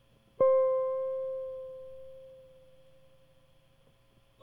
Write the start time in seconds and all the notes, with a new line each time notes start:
0.41 C5